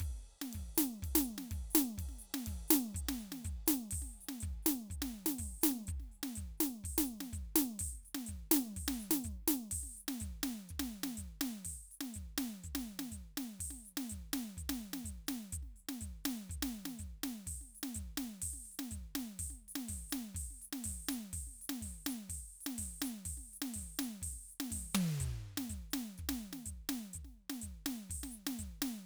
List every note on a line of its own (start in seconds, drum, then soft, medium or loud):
0.06 kick soft
0.06 ride medium
0.11 snare soft
0.16 snare soft
0.41 snare medium
0.53 kick soft
0.53 ride medium
0.59 kick soft
0.75 snare medium
0.75 hi-hat pedal soft
1.02 kick soft
1.02 ride medium
1.15 snare medium
1.21 hi-hat pedal medium
1.38 snare soft
1.51 kick soft
1.51 ride medium
1.70 hi-hat pedal medium
1.75 snare medium
1.98 kick soft
1.98 ride medium
2.09 snare soft
2.18 hi-hat pedal medium
2.18 ride soft
2.34 snare medium
2.46 kick soft
2.46 ride medium
2.52 kick soft
2.68 snare medium
2.68 hi-hat pedal medium
2.94 closed hi-hat medium
2.94 kick soft
3.08 snare medium
3.17 closed hi-hat soft
3.17 hi-hat pedal soft
3.32 snare soft
3.44 closed hi-hat medium
3.44 kick soft
3.66 snare medium
3.66 hi-hat pedal soft
3.91 open hi-hat medium
3.91 kick soft
4.02 snare soft
4.20 hi-hat pedal soft
4.28 snare medium
4.40 closed hi-hat medium
4.40 kick soft
4.48 kick soft
4.62 snare medium
4.62 hi-hat pedal soft
4.90 closed hi-hat medium
4.90 kick soft
5.02 snare medium
5.26 snare medium
5.38 open hi-hat medium
5.38 kick soft
5.44 kick soft
5.61 snare medium
5.61 hi-hat pedal medium
5.71 snare soft
5.87 closed hi-hat medium
5.87 kick soft
5.99 snare soft
6.11 open hi-hat soft
6.11 hi-hat pedal soft
6.23 snare medium
6.35 closed hi-hat medium
6.35 kick soft
6.42 kick soft
6.57 snare medium
6.57 hi-hat pedal soft
6.84 open hi-hat medium
6.84 kick soft
6.89 kick soft
6.98 snare medium
7.04 hi-hat pedal soft
7.10 closed hi-hat soft
7.20 snare soft
7.33 closed hi-hat medium
7.33 kick soft
7.56 snare medium
7.79 open hi-hat medium
7.79 kick soft
7.85 kick soft
7.92 snare soft
8.03 hi-hat pedal soft
8.03 open hi-hat soft
8.14 snare medium
8.26 closed hi-hat medium
8.26 kick soft
8.33 kick soft
8.51 snare medium
8.56 snare soft
8.76 open hi-hat medium
8.76 kick soft
8.88 snare medium
8.99 closed hi-hat soft
8.99 hi-hat pedal medium
9.11 snare medium
9.24 closed hi-hat medium
9.24 kick soft
9.47 snare medium
9.71 open hi-hat medium
9.71 kick soft
9.77 kick soft
9.83 snare soft
9.95 open hi-hat soft
9.95 hi-hat pedal medium
10.08 snare medium
10.20 closed hi-hat medium
10.20 kick soft
10.43 snare medium
10.43 hi-hat pedal soft
10.69 kick soft
10.69 closed hi-hat medium
10.79 snare medium
10.89 hi-hat pedal soft
11.03 snare medium
11.17 closed hi-hat medium
11.17 kick soft
11.41 snare medium
11.65 open hi-hat medium
11.65 kick soft
11.91 hi-hat pedal medium
12.01 snare medium
12.14 closed hi-hat medium
12.14 kick soft
12.38 snare medium
12.63 closed hi-hat soft
12.63 kick soft
12.75 snare medium
12.99 snare medium
13.11 closed hi-hat medium
13.11 kick soft
13.37 snare medium
13.59 open hi-hat medium
13.59 kick soft
13.70 snare soft
13.85 hi-hat pedal soft
13.97 snare medium
14.09 closed hi-hat medium
14.09 kick soft
14.33 snare medium
14.57 closed hi-hat medium
14.57 kick soft
14.62 kick soft
14.69 snare medium
14.93 snare medium
15.04 closed hi-hat medium
15.04 kick soft
15.09 kick soft
15.27 snare medium
15.27 hi-hat pedal soft
15.52 closed hi-hat medium
15.52 kick soft
15.62 snare soft
15.76 open hi-hat soft
15.76 hi-hat pedal soft
15.89 snare medium
16.01 closed hi-hat medium
16.01 kick soft
16.24 snare medium
16.24 hi-hat pedal soft
16.49 closed hi-hat medium
16.49 kick soft
16.54 kick soft
16.62 snare medium
16.77 closed hi-hat soft
16.85 snare soft
16.99 closed hi-hat medium
16.99 kick soft
17.04 kick soft
17.23 snare medium
17.46 open hi-hat medium
17.46 kick soft
17.51 kick soft
17.61 snare soft
17.75 hi-hat pedal soft
17.83 snare medium
17.94 closed hi-hat medium
17.94 kick soft
18.00 kick soft
18.17 snare medium
18.42 open hi-hat medium
18.42 kick soft
18.53 snare soft
18.65 open hi-hat soft
18.71 hi-hat pedal soft
18.79 snare medium
18.91 closed hi-hat medium
18.91 kick soft
18.96 kick soft
19.15 snare medium
19.39 open hi-hat medium
19.39 kick soft
19.44 kick soft
19.50 snare soft
19.64 hi-hat pedal medium
19.64 open hi-hat soft
19.75 snare medium
19.88 open hi-hat medium
19.88 kick soft
19.94 kick soft
20.10 snare medium
20.10 hi-hat pedal medium
20.34 open hi-hat medium
20.34 kick soft
20.50 snare soft
20.61 open hi-hat soft
20.61 hi-hat pedal medium
20.72 snare medium
20.84 open hi-hat medium
20.84 kick soft
20.90 kick soft
21.08 snare medium
21.08 hi-hat pedal medium
21.33 open hi-hat medium
21.33 kick soft
21.38 kick soft
21.47 snare soft
21.58 open hi-hat soft
21.58 hi-hat pedal medium
21.69 snare medium
21.81 open hi-hat medium
21.81 kick soft
22.06 snare medium
22.06 hi-hat pedal medium
22.29 open hi-hat medium
22.29 kick soft
22.54 open hi-hat soft
22.60 hi-hat pedal medium
22.66 snare medium
22.78 open hi-hat medium
22.78 kick soft
23.02 snare medium
23.02 hi-hat pedal medium
23.25 open hi-hat medium
23.25 kick soft
23.30 kick soft
23.37 snare soft
23.50 open hi-hat soft
23.50 hi-hat pedal medium
23.62 snare medium
23.74 open hi-hat medium
23.74 kick soft
23.99 snare medium
23.99 hi-hat pedal medium
24.22 open hi-hat medium
24.22 kick soft
24.27 kick soft
24.32 snare soft
24.48 hi-hat pedal soft
24.48 open hi-hat soft
24.60 snare medium
24.70 open hi-hat medium
24.70 kick soft
24.70 snare soft
24.76 kick soft
24.94 hi-hat pedal medium
24.94 high tom loud
25.15 snare soft
25.20 closed hi-hat medium
25.20 kick soft
25.44 closed hi-hat soft
25.57 snare medium
25.69 closed hi-hat medium
25.69 kick soft
25.90 snare medium
25.90 hi-hat pedal soft
26.18 kick soft
26.18 closed hi-hat soft
26.23 kick soft
26.29 snare medium
26.36 hi-hat pedal soft
26.53 snare soft
26.66 closed hi-hat medium
26.66 kick soft
26.71 kick soft
26.89 snare medium
27.13 closed hi-hat medium
27.13 kick soft
27.24 snare soft
27.49 snare medium
27.61 closed hi-hat medium
27.61 kick soft
27.86 snare medium
28.09 open hi-hat medium
28.09 kick soft
28.14 kick soft
28.23 snare soft
28.31 hi-hat pedal medium
28.36 closed hi-hat soft
28.46 snare medium
28.59 closed hi-hat medium
28.59 kick soft
28.82 snare medium